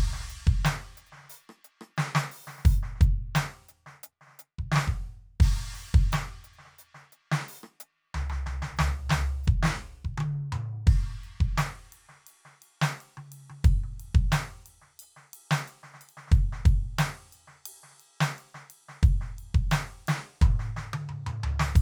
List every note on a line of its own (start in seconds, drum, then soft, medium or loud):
0.13 snare soft
0.20 snare soft
0.30 closed hi-hat medium
0.47 kick loud
0.65 closed hi-hat loud
0.65 snare loud
0.97 closed hi-hat medium
1.07 closed hi-hat soft
1.12 snare soft
1.17 snare soft
1.24 snare soft
1.30 open hi-hat medium
1.30 hi-hat pedal medium
1.49 cross-stick soft
1.65 closed hi-hat medium
1.81 cross-stick medium
1.96 snare loud
1.96 hi-hat pedal soft
2.15 snare loud
2.32 open hi-hat medium
2.47 snare medium
2.58 snare soft
2.65 open hi-hat medium
2.65 kick loud
2.73 hi-hat pedal soft
2.83 snare soft
2.96 snare soft
3.01 closed hi-hat medium
3.01 kick loud
3.35 closed hi-hat loud
3.35 snare loud
3.63 hi-hat pedal soft
3.69 closed hi-hat medium
3.86 snare soft
4.03 closed hi-hat loud
4.21 snare soft
4.27 snare soft
4.31 snare soft
4.39 closed hi-hat loud
4.59 kick medium
4.72 snare loud
4.76 snare loud
4.88 kick medium
5.40 open hi-hat medium
5.40 kick loud
5.40 crash loud
5.74 open hi-hat medium
5.74 snare soft
5.94 kick loud
6.05 hi-hat pedal soft
6.12 closed hi-hat loud
6.12 snare loud
6.44 closed hi-hat medium
6.54 closed hi-hat soft
6.59 snare soft
6.65 snare soft
6.79 open hi-hat medium
6.79 hi-hat pedal medium
6.95 snare soft
7.12 closed hi-hat medium
7.32 snare loud
7.48 open hi-hat medium
7.57 hi-hat pedal soft
7.63 cross-stick medium
7.80 closed hi-hat loud
8.14 snare medium
8.14 floor tom loud
8.30 snare medium
8.30 floor tom medium
8.46 snare medium
8.46 floor tom medium
8.62 snare medium
8.62 floor tom loud
8.77 snare loud
8.77 floor tom loud
8.77 hi-hat pedal medium
9.10 snare loud
9.10 floor tom loud
9.10 hi-hat pedal medium
9.17 kick soft
9.44 hi-hat pedal medium
9.48 kick loud
9.63 kick soft
9.63 snare loud
9.65 snare loud
10.05 kick medium
10.14 kick soft
10.14 high tom loud
10.20 high tom loud
10.52 mid tom loud
10.87 kick loud
10.87 crash medium
11.24 ride bell soft
11.40 kick loud
11.58 snare loud
11.58 ride medium
11.92 ride medium
12.09 snare soft
12.27 hi-hat pedal medium
12.27 ride medium
12.45 snare soft
12.62 ride soft
12.82 snare loud
12.87 hi-hat pedal medium
13.01 ride soft
13.17 high tom medium
13.32 ride medium
13.50 high tom medium
13.64 kick loud
13.64 ride bell soft
13.84 high tom soft
14.00 ride medium
14.15 kick loud
14.32 snare loud
14.32 ride bell medium
14.66 ride medium
14.82 snare soft
14.99 hi-hat pedal medium
14.99 ride bell medium
15.17 snare soft
15.34 ride medium
15.51 snare loud
15.58 hi-hat pedal medium
15.68 ride bell soft
15.83 snare soft
15.94 snare soft
16.01 ride bell soft
16.09 ride soft
16.17 snare soft
16.28 snare soft
16.32 kick loud
16.32 ride soft
16.39 hi-hat pedal soft
16.53 snare soft
16.65 kick loud
16.65 ride soft
16.99 snare loud
16.99 hi-hat pedal medium
16.99 ride loud
17.28 hi-hat pedal soft
17.33 ride bell soft
17.48 snare soft
17.66 hi-hat pedal medium
17.66 ride loud
17.83 snare soft
17.91 snare soft
18.00 ride soft
18.21 snare loud
18.21 hi-hat pedal medium
18.38 ride soft
18.55 snare soft
18.70 ride medium
18.89 snare soft
19.03 kick loud
19.03 ride soft
19.21 snare soft
19.39 ride soft
19.55 kick loud
19.71 snare loud
19.71 ride medium
20.08 snare loud
20.08 ride medium
20.42 kick loud
20.42 mid tom loud
20.60 snare soft
20.77 snare medium
20.93 high tom loud
21.09 mid tom medium
21.27 mid tom loud
21.44 floor tom loud
21.60 snare loud
21.76 kick loud
21.76 ride bell medium